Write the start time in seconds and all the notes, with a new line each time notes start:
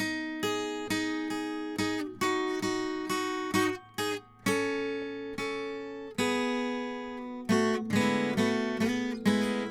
0.01 D#4
0.44 G#4
0.91 D#4 G#4
1.32 G#4
1.80 D#4 G#4
2.00 G4
2.22 D#4 F#4
2.64 D#4 F#4
3.11 D#4 F#4
3.55 D#4 F#4
3.99 D#4 G#4
4.47 C#4 A4
5.39 C#4 A4
6.19 B3 G#4
7.50 A3 B3 F#4
7.91 D3 G#3
7.97 B3
8.02 E4
8.33 F#4
8.39 A3 B3
8.82 B3 G#4
9.27 G#3 B3 E4